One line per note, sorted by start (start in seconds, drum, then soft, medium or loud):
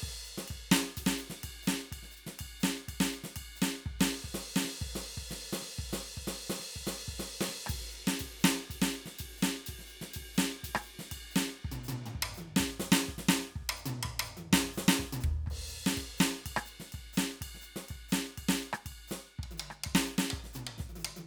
0.03 kick soft
0.09 kick soft
0.25 hi-hat pedal medium
0.38 snare medium
0.48 kick soft
0.48 ride bell loud
0.57 kick soft
0.72 snare loud
0.72 hi-hat pedal medium
0.97 kick soft
0.97 ride loud
1.07 snare loud
1.18 hi-hat pedal medium
1.18 ride medium
1.30 snare medium
1.44 kick soft
1.44 ride bell loud
1.63 hi-hat pedal medium
1.68 snare medium
1.75 snare soft
1.92 kick soft
1.92 ride bell loud
1.99 kick soft
2.03 snare soft
2.11 hi-hat pedal medium
2.17 ride medium
2.27 snare medium
2.39 kick soft
2.39 ride bell loud
2.60 snare loud
2.60 hi-hat pedal medium
2.89 kick soft
2.89 ride bell loud
3.01 snare loud
3.07 hi-hat pedal medium
3.13 ride soft
3.24 snare medium
3.36 kick soft
3.36 ride bell loud
3.56 hi-hat pedal medium
3.62 snare loud
3.86 kick soft
3.94 kick soft
3.96 kick soft
4.00 snare loud
4.00 hi-hat pedal medium
4.00 crash loud
4.24 kick soft
4.35 snare medium
4.35 crash loud
4.56 snare medium
4.56 crash loud
4.65 snare soft
4.82 kick soft
4.89 kick soft
4.95 snare medium
4.95 crash loud
5.18 kick soft
5.30 snare medium
5.30 crash loud
5.53 snare loud
5.53 crash medium
5.62 snare soft
5.79 kick soft
5.86 kick soft
5.92 snare loud
5.92 crash loud
6.17 kick soft
6.27 snare medium
6.27 crash loud
6.50 snare loud
6.50 crash loud
6.60 snare soft
6.76 kick soft
6.82 kick soft
6.86 snare loud
6.86 crash loud
7.08 kick soft
7.14 kick soft
7.19 snare medium
7.19 crash loud
7.41 snare loud
7.41 crash loud
7.49 snare soft
7.67 kick medium
7.67 cross-stick soft
7.67 ride loud
7.78 kick soft
7.91 hi-hat pedal soft
7.91 ride soft
8.07 snare medium
8.20 kick soft
8.20 ride loud
8.27 kick soft
8.40 hi-hat pedal medium
8.44 snare loud
8.70 kick soft
8.70 ride loud
8.82 snare loud
8.89 hi-hat pedal medium
8.94 ride soft
9.06 snare medium
9.19 kick soft
9.19 ride loud
9.38 hi-hat pedal medium
9.43 snare loud
9.67 kick soft
9.67 ride loud
9.75 kick soft
9.79 snare soft
9.87 hi-hat pedal medium
9.87 ride soft
10.02 snare medium
10.14 kick soft
10.14 ride loud
10.22 kick soft
10.35 snare loud
10.35 hi-hat pedal medium
10.64 kick soft
10.64 ride loud
10.70 kick soft
10.75 cross-stick medium
10.82 hi-hat pedal medium
10.87 ride soft
10.99 snare medium
11.12 kick soft
11.12 ride bell loud
11.31 hi-hat pedal medium
11.36 snare loud
11.47 snare soft
11.65 kick soft
11.71 kick soft
11.71 mid tom medium
11.84 hi-hat pedal medium
11.89 mid tom loud
12.06 floor tom loud
12.15 kick soft
12.22 kick soft
12.22 floor tom loud
12.34 hi-hat pedal medium
12.34 high tom loud
12.57 kick soft
12.57 snare loud
12.66 kick soft
12.80 snare loud
12.80 hi-hat pedal medium
12.92 snare loud
13.07 kick soft
13.07 snare soft
13.18 snare medium
13.29 snare loud
13.29 hi-hat pedal medium
13.56 kick soft
13.63 kick soft
13.69 floor tom loud
13.77 hi-hat pedal medium
13.86 mid tom loud
14.03 kick soft
14.03 floor tom loud
14.11 kick soft
14.20 floor tom loud
14.25 hi-hat pedal medium
14.37 high tom medium
14.53 kick soft
14.53 snare loud
14.69 cross-stick soft
14.74 snare loud
14.74 hi-hat pedal medium
14.89 snare loud
14.99 kick soft
14.99 snare soft
15.06 kick soft
15.13 mid tom loud
15.21 hi-hat pedal medium
15.21 mid tom loud
15.47 kick soft
15.47 cross-stick soft
15.51 kick soft
15.51 crash loud
15.59 kick soft
15.68 hi-hat pedal medium
15.87 snare loud
15.97 kick soft
15.97 ride bell loud
16.18 snare loud
16.18 hi-hat pedal medium
16.38 hi-hat pedal soft
16.46 kick soft
16.46 ride bell loud
16.57 cross-stick medium
16.65 hi-hat pedal medium
16.65 ride soft
16.80 snare medium
16.86 hi-hat pedal soft
16.93 kick soft
16.93 ride bell medium
17.13 hi-hat pedal medium
17.18 snare loud
17.41 kick soft
17.41 ride bell loud
17.55 snare soft
17.62 hi-hat pedal medium
17.62 ride soft
17.76 snare medium
17.89 kick soft
17.89 ride bell medium
18.09 snare loud
18.09 hi-hat pedal medium
18.38 kick soft
18.38 ride bell loud
18.49 snare loud
18.57 hi-hat pedal medium
18.63 ride soft
18.73 cross-stick medium
18.86 kick soft
18.86 ride bell loud
18.92 kick soft
19.08 snare medium
19.08 hi-hat pedal medium
19.39 kick soft
19.43 kick soft
19.43 high tom medium
19.51 high tom medium
19.58 hi-hat pedal medium
19.58 high tom loud
19.71 cross-stick soft
19.84 kick soft
19.84 high tom loud
19.93 kick soft
19.93 snare loud
20.05 hi-hat pedal medium
20.18 snare medium
20.31 kick soft
20.31 mid tom loud
20.40 kick soft
20.44 snare soft
20.53 snare soft
20.53 hi-hat pedal medium
20.53 mid tom medium
20.67 mid tom loud
20.78 kick soft
20.78 snare soft
20.87 kick soft
20.87 high tom medium
20.96 hi-hat pedal medium
20.96 high tom medium
21.05 high tom loud
21.17 high tom medium